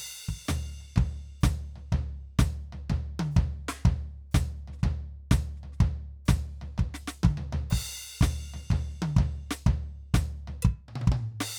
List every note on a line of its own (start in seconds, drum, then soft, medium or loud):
0.29 kick medium
0.45 snare loud
0.45 hi-hat pedal soft
0.49 floor tom loud
0.81 floor tom soft
0.96 kick loud
0.96 floor tom loud
1.41 kick loud
1.41 snare loud
1.41 floor tom loud
1.41 hi-hat pedal soft
1.76 floor tom soft
1.92 kick medium
1.92 floor tom loud
2.39 kick loud
2.39 snare loud
2.39 floor tom loud
2.73 floor tom medium
2.90 kick medium
2.90 floor tom loud
3.20 high tom loud
3.31 hi-hat pedal soft
3.37 kick loud
3.37 floor tom loud
3.69 snare loud
3.85 kick loud
3.85 floor tom loud
4.31 kick loud
4.31 snare loud
4.31 floor tom loud
4.31 hi-hat pedal soft
4.68 floor tom medium
4.73 snare soft
4.78 snare soft
4.83 kick loud
4.83 floor tom loud
5.31 kick loud
5.31 snare loud
5.31 floor tom loud
5.57 snare soft
5.63 floor tom medium
5.73 snare soft
5.78 kick loud
5.78 snare soft
5.78 floor tom loud
6.26 kick loud
6.26 snare loud
6.26 floor tom loud
6.26 hi-hat pedal soft
6.62 floor tom medium
6.78 kick loud
6.78 floor tom medium
6.94 snare medium
7.08 snare loud
7.23 kick loud
7.23 high tom loud
7.38 floor tom medium
7.53 floor tom loud
7.70 kick loud
7.70 crash loud
8.19 kick loud
8.19 snare loud
8.19 floor tom loud
8.19 hi-hat pedal soft
8.54 floor tom medium
8.70 kick loud
8.70 floor tom loud
9.02 high tom loud
9.17 kick loud
9.17 floor tom loud
9.51 snare loud
9.67 kick loud
9.67 floor tom loud
10.14 kick loud
10.14 snare loud
10.14 floor tom loud
10.48 floor tom medium
10.63 kick loud
10.63 percussion loud
10.89 mid tom medium
10.96 mid tom loud
11.02 mid tom medium
11.07 kick loud
11.12 mid tom loud
11.41 snare loud
11.41 crash loud